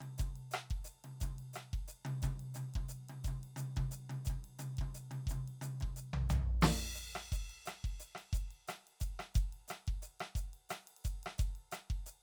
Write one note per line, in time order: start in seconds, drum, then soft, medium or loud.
0.01 high tom medium
0.01 ride soft
0.18 kick medium
0.18 hi-hat pedal medium
0.18 high tom medium
0.18 ride soft
0.36 ride soft
0.51 cross-stick medium
0.51 hi-hat pedal medium
0.51 ride soft
0.71 kick medium
0.71 ride soft
0.85 hi-hat pedal medium
0.85 ride soft
1.04 high tom medium
1.04 ride soft
1.21 kick medium
1.21 hi-hat pedal medium
1.21 high tom medium
1.21 ride soft
1.39 ride soft
1.54 cross-stick medium
1.54 hi-hat pedal medium
1.54 ride soft
1.74 kick medium
1.74 ride soft
1.88 hi-hat pedal medium
1.88 ride soft
2.05 high tom loud
2.05 ride soft
2.22 kick medium
2.22 hi-hat pedal medium
2.22 high tom medium
2.22 ride soft
2.40 ride soft
2.55 hi-hat pedal medium
2.55 high tom medium
2.55 ride soft
2.74 kick medium
2.74 high tom medium
2.74 ride soft
2.89 hi-hat pedal medium
2.89 ride soft
3.09 high tom medium
3.09 ride soft
3.24 kick medium
3.24 hi-hat pedal medium
3.24 high tom medium
3.24 ride soft
3.44 ride soft
3.57 hi-hat pedal medium
3.57 high tom medium
3.57 ride soft
3.77 kick medium
3.77 high tom medium
3.77 ride soft
3.92 hi-hat pedal medium
3.92 ride soft
4.10 high tom medium
4.10 ride soft
4.25 kick medium
4.25 hi-hat pedal medium
4.25 ride soft
4.30 high tom medium
4.45 ride soft
4.59 hi-hat pedal medium
4.59 high tom medium
4.59 ride soft
4.78 kick medium
4.78 high tom medium
4.78 ride soft
4.95 hi-hat pedal medium
4.95 ride soft
5.11 high tom medium
5.11 ride soft
5.27 kick medium
5.27 hi-hat pedal medium
5.27 ride soft
5.31 high tom medium
5.48 ride soft
5.62 hi-hat pedal medium
5.62 high tom medium
5.62 ride soft
5.81 kick medium
5.81 high tom medium
5.81 ride soft
5.97 hi-hat pedal medium
5.97 ride soft
6.14 floor tom loud
6.30 floor tom loud
6.30 hi-hat pedal medium
6.62 snare loud
6.62 hi-hat pedal medium
6.62 crash medium
6.95 hi-hat pedal medium
6.95 ride soft
7.16 cross-stick medium
7.16 ride soft
7.32 kick medium
7.32 hi-hat pedal medium
7.32 ride soft
7.50 ride soft
7.66 cross-stick medium
7.66 hi-hat pedal medium
7.66 ride soft
7.85 kick medium
7.85 ride soft
8.00 hi-hat pedal medium
8.00 ride soft
8.15 cross-stick medium
8.15 ride soft
8.33 kick medium
8.33 hi-hat pedal medium
8.33 ride soft
8.51 ride soft
8.68 cross-stick medium
8.68 hi-hat pedal medium
8.68 ride soft
8.87 ride soft
9.01 kick medium
9.01 hi-hat pedal medium
9.01 ride soft
9.20 cross-stick medium
9.20 ride soft
9.35 kick medium
9.35 hi-hat pedal medium
9.35 ride soft
9.53 ride soft
9.68 cross-stick medium
9.68 hi-hat pedal medium
9.68 ride soft
9.87 kick medium
9.87 ride soft
10.03 hi-hat pedal medium
10.03 ride soft
10.20 cross-stick medium
10.20 ride soft
10.36 kick medium
10.36 hi-hat pedal medium
10.36 ride soft
10.54 ride soft
10.70 cross-stick medium
10.70 hi-hat pedal medium
10.70 ride medium
10.88 ride soft
10.97 ride soft
11.05 kick medium
11.05 hi-hat pedal medium
11.05 ride soft
11.24 cross-stick medium
11.24 ride soft
11.39 kick medium
11.39 hi-hat pedal medium
11.39 ride soft
11.56 ride soft
11.72 cross-stick medium
11.72 hi-hat pedal medium
11.72 ride soft
11.90 kick medium
11.90 ride soft
12.06 hi-hat pedal medium
12.06 ride soft